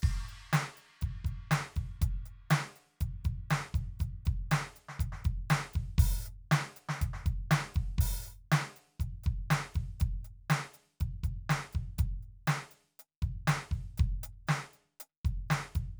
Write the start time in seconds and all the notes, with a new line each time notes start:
0.01 kick, hi-hat pedal, crash
0.29 closed hi-hat
0.54 closed hi-hat, snare
0.78 closed hi-hat
1.02 closed hi-hat, kick
1.25 closed hi-hat, kick
1.52 closed hi-hat, snare
1.76 closed hi-hat, kick
2.02 closed hi-hat, kick
2.26 closed hi-hat
2.51 closed hi-hat, snare
2.76 closed hi-hat
3.01 closed hi-hat, kick
3.25 closed hi-hat, kick
3.51 closed hi-hat, snare
3.75 open hi-hat, kick
4.00 closed hi-hat, kick, hi-hat pedal
4.26 closed hi-hat, kick
4.52 closed hi-hat, snare
4.77 closed hi-hat
4.89 snare
5.00 closed hi-hat, kick
5.13 snare
5.25 closed hi-hat, kick
5.51 closed hi-hat, snare
5.74 closed hi-hat, kick
5.99 open hi-hat, kick
6.26 closed hi-hat, hi-hat pedal
6.52 closed hi-hat, snare
6.76 closed hi-hat, hi-hat pedal
6.89 snare
7.02 closed hi-hat, kick
7.14 snare
7.27 closed hi-hat, kick
7.52 closed hi-hat, snare
7.75 closed hi-hat, kick
7.99 open hi-hat, kick
8.26 open hi-hat, hi-hat pedal
8.52 closed hi-hat, snare
8.77 closed hi-hat
9.00 closed hi-hat, kick
9.24 closed hi-hat, kick
9.51 closed hi-hat, snare
9.75 closed hi-hat, kick
10.01 closed hi-hat, kick
10.25 closed hi-hat
10.51 closed hi-hat, snare
10.75 closed hi-hat
11.01 closed hi-hat, kick
11.24 closed hi-hat, kick
11.50 closed hi-hat, snare
11.73 closed hi-hat, kick
11.99 closed hi-hat, kick
12.23 closed hi-hat
12.48 closed hi-hat, snare
12.72 closed hi-hat
13.00 closed hi-hat
13.23 kick, closed hi-hat
13.48 closed hi-hat, snare
13.72 kick, closed hi-hat
13.98 kick, closed hi-hat
14.24 open hi-hat
14.48 snare, hi-hat pedal
14.74 closed hi-hat
15.01 closed hi-hat
15.25 kick, closed hi-hat
15.49 closed hi-hat, snare, hi-hat pedal
15.76 closed hi-hat, kick